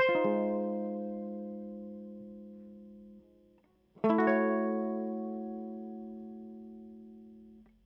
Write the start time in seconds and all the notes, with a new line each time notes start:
0.00 C5
0.10 F4
0.16 D#4
0.26 G#3
4.05 A3
4.10 E4
4.19 F#4
4.28 C#5